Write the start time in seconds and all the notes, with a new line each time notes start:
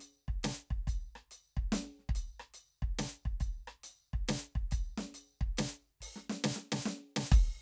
0.01 closed hi-hat
0.29 kick
0.44 closed hi-hat, snare
0.71 kick
0.88 closed hi-hat, kick
1.16 cross-stick
1.32 closed hi-hat
1.57 kick
1.73 closed hi-hat, snare
1.99 snare
2.10 kick
2.16 closed hi-hat
2.40 cross-stick
2.54 closed hi-hat
2.83 kick
2.99 closed hi-hat, snare
3.26 kick
3.41 closed hi-hat, kick
3.68 cross-stick
3.84 closed hi-hat
4.14 kick
4.29 closed hi-hat, snare
4.56 kick
4.72 closed hi-hat, kick
4.98 snare
5.15 closed hi-hat
5.41 kick
5.58 closed hi-hat, snare
6.01 kick, percussion
6.16 snare
6.30 snare
6.44 snare
6.57 snare
6.73 snare
6.86 snare
7.17 snare
7.32 kick, percussion